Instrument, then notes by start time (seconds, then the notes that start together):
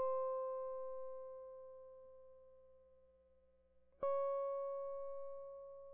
electric guitar
0.00 C5
4.03 C#5